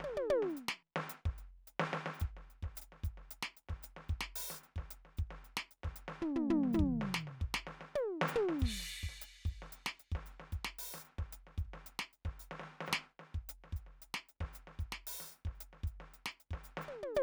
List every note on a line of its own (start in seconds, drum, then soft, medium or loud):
0.01 snare soft
0.01 high tom medium
0.10 snare soft
0.17 high tom medium
0.30 high tom loud
0.43 snare soft
0.50 hi-hat pedal soft
0.57 closed hi-hat medium
0.69 snare loud
0.96 snare medium
1.10 closed hi-hat medium
1.26 kick soft
1.26 snare soft
1.39 closed hi-hat soft
1.68 closed hi-hat medium
1.80 snare medium
1.94 snare medium
2.06 snare medium
2.14 hi-hat pedal soft
2.20 closed hi-hat medium
2.20 kick soft
2.37 snare soft
2.51 closed hi-hat soft
2.63 kick soft
2.63 snare soft
2.76 closed hi-hat medium
2.76 hi-hat pedal soft
2.82 closed hi-hat medium
2.93 snare soft
3.04 closed hi-hat soft
3.04 kick soft
3.18 snare soft
3.31 closed hi-hat medium
3.43 snare medium
3.57 closed hi-hat soft
3.69 kick soft
3.69 snare soft
3.83 closed hi-hat medium
3.83 hi-hat pedal medium
3.97 snare soft
4.09 kick soft
4.09 closed hi-hat soft
4.21 snare medium
4.36 open hi-hat loud
4.51 snare soft
4.57 hi-hat pedal medium
4.64 closed hi-hat soft
4.76 kick soft
4.76 snare soft
4.81 kick soft
4.91 closed hi-hat medium
5.06 snare soft
5.18 closed hi-hat soft
5.18 kick soft
5.28 kick soft
5.28 snare soft
5.45 closed hi-hat soft
5.57 snare medium
5.71 closed hi-hat soft
5.84 kick soft
5.84 snare soft
5.90 kick soft
5.96 closed hi-hat medium
6.09 snare soft
6.22 floor tom medium
6.36 floor tom medium
6.50 floor tom loud
6.64 snare soft
6.73 hi-hat pedal medium
6.73 floor tom loud
6.80 kick medium
6.87 kick soft
7.02 snare soft
7.15 snare loud
7.20 hi-hat pedal soft
7.28 snare soft
7.41 kick soft
7.41 snare soft
7.55 snare loud
7.67 snare soft
7.81 snare soft
7.96 hi-hat pedal soft
7.96 high tom loud
8.22 snare medium
8.28 snare soft
8.28 hi-hat pedal loud
8.36 mid tom loud
8.49 snare soft
8.59 kick medium
8.59 hi-hat pedal medium
8.64 crash medium
8.80 snare soft
8.89 closed hi-hat soft
9.04 kick soft
9.09 snare soft
9.17 hi-hat pedal soft
9.22 closed hi-hat medium
9.46 kick soft
9.46 closed hi-hat soft
9.51 kick soft
9.63 snare soft
9.73 closed hi-hat medium
9.87 snare loud
10.00 closed hi-hat soft
10.12 kick soft
10.12 snare soft
10.26 hi-hat pedal medium
10.40 snare soft
10.53 closed hi-hat soft
10.53 kick soft
10.65 snare medium
10.79 open hi-hat medium
10.94 snare soft
11.01 hi-hat pedal medium
11.05 closed hi-hat soft
11.19 kick soft
11.19 snare soft
11.33 closed hi-hat medium
11.47 snare soft
11.58 closed hi-hat soft
11.58 kick soft
11.65 kick soft
11.74 snare soft
11.87 closed hi-hat medium
12.00 snare medium
12.14 closed hi-hat soft
12.26 kick soft
12.26 snare soft
12.40 open hi-hat soft
12.40 hi-hat pedal medium
12.52 snare soft
12.60 snare soft
12.64 snare soft
12.72 snare soft
12.78 snare soft
12.81 snare soft
12.86 kick soft
12.86 snare soft
12.86 hi-hat pedal soft
12.93 snare loud
13.20 snare soft
13.35 kick soft
13.49 closed hi-hat medium
13.64 snare soft
13.73 closed hi-hat soft
13.73 kick soft
13.87 snare soft
13.93 snare soft
14.02 closed hi-hat medium
14.15 snare medium
14.29 closed hi-hat soft
14.41 kick soft
14.41 snare soft
14.53 closed hi-hat medium
14.53 hi-hat pedal soft
14.68 snare soft
14.80 closed hi-hat soft
14.80 kick soft
14.93 snare medium
15.07 open hi-hat medium
15.21 snare soft
15.28 hi-hat pedal soft
15.32 closed hi-hat soft
15.46 kick soft
15.46 snare soft
15.55 hi-hat pedal soft
15.61 closed hi-hat medium
15.73 snare soft
15.84 closed hi-hat soft
15.84 kick soft
16.01 snare soft
16.14 closed hi-hat soft
16.26 snare medium
16.31 hi-hat pedal soft
16.41 closed hi-hat soft
16.51 kick soft
16.51 snare soft
16.64 closed hi-hat soft
16.64 hi-hat pedal medium
16.78 snare soft
16.82 hi-hat pedal medium
16.88 high tom medium
16.93 snare soft
17.03 high tom medium
17.15 hi-hat pedal medium
17.15 high tom loud